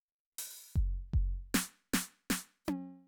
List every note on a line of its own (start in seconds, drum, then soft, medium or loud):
0.38 open hi-hat loud
0.73 kick medium
0.73 hi-hat pedal soft
1.13 kick medium
1.13 ride soft
1.54 snare loud
1.93 snare medium
2.30 snare medium
2.65 hi-hat pedal soft
2.65 high tom loud